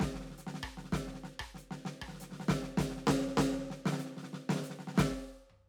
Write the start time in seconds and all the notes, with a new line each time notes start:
0.01 kick, snare
0.15 snare
0.21 snare
0.26 snare
0.31 snare
0.39 snare, hi-hat pedal
0.48 snare
0.55 snare
0.64 kick, cross-stick
0.78 snare
0.85 snare
0.93 kick, snare, hi-hat pedal
1.08 snare
1.15 snare
1.24 snare
1.40 kick, cross-stick
1.55 snare, hi-hat pedal
1.72 snare
1.86 snare
2.02 kick, cross-stick
2.09 snare
2.14 snare
2.21 snare, hi-hat pedal
2.31 snare
2.33 snare
2.49 kick, snare
2.63 snare
2.71 snare
2.78 kick, snare, hi-hat pedal
2.91 snare
2.97 snare
3.03 snare
3.08 kick, snare
3.21 snare
3.28 snare
3.33 snare
3.38 kick, snare, hi-hat pedal
3.53 snare
3.59 snare
3.64 snare
3.71 snare
3.86 snare
3.93 snare
3.99 snare, hi-hat pedal
4.06 snare
4.12 snare
4.18 snare
4.24 snare
4.34 snare
4.50 snare
4.57 snare
4.62 snare, hi-hat pedal
4.71 snare
4.80 snare
4.88 snare
4.95 snare
4.99 kick, snare
5.10 kick
5.51 floor tom